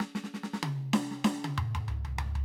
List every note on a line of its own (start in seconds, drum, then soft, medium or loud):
0.06 snare medium
0.15 snare medium
0.24 snare soft
0.34 snare soft
0.43 snare soft
0.63 high tom loud
0.93 snare loud
1.11 snare medium
1.24 snare loud
1.44 high tom loud
1.58 mid tom loud
1.75 mid tom loud
1.88 floor tom loud
2.05 floor tom loud
2.18 floor tom loud
2.35 floor tom loud